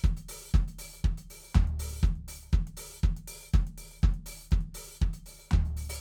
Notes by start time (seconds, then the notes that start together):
0.01 kick, hi-hat pedal
0.05 closed hi-hat
0.17 closed hi-hat
0.29 open hi-hat
0.44 open hi-hat
0.50 hi-hat pedal
0.55 kick, closed hi-hat
0.68 closed hi-hat
0.79 open hi-hat
0.94 open hi-hat
0.99 hi-hat pedal
1.05 kick, closed hi-hat
1.18 closed hi-hat
1.31 open hi-hat
1.43 open hi-hat
1.53 kick, floor tom, hi-hat pedal
1.68 closed hi-hat
1.80 open hi-hat
1.94 open hi-hat
2.00 kick, hi-hat pedal
2.04 closed hi-hat
2.16 closed hi-hat
2.29 open hi-hat
2.43 open hi-hat
2.50 kick, closed hi-hat, hi-hat pedal
2.67 closed hi-hat
2.77 open hi-hat
2.93 open hi-hat
2.97 hi-hat pedal
3.04 kick, closed hi-hat
3.17 closed hi-hat
3.28 open hi-hat
3.43 hi-hat pedal, open hi-hat
3.54 kick, closed hi-hat
3.67 closed hi-hat
3.78 open hi-hat
3.92 open hi-hat
3.97 hi-hat pedal
4.03 kick, closed hi-hat
4.14 closed hi-hat
4.23 open hi-hat, kick
4.39 open hi-hat
4.45 hi-hat pedal
4.51 kick, closed hi-hat
4.61 closed hi-hat
4.73 open hi-hat, kick
4.87 open hi-hat
4.96 hi-hat pedal
5.02 kick, closed hi-hat
5.14 closed hi-hat
5.26 open hi-hat
5.39 open hi-hat
5.49 floor tom, hi-hat pedal
5.54 kick
5.65 closed hi-hat
5.74 open hi-hat, kick
5.90 open hi-hat
5.97 hi-hat pedal